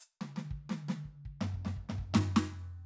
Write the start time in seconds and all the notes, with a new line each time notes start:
0.01 hi-hat pedal
0.21 snare, high tom
0.37 snare, high tom
0.51 kick
0.70 snare, high tom
0.89 snare, high tom
1.06 kick
1.26 kick
1.41 snare, floor tom
1.54 kick
1.65 snare, floor tom
1.77 kick
1.90 snare, floor tom
1.99 kick
2.15 snare, floor tom
2.37 snare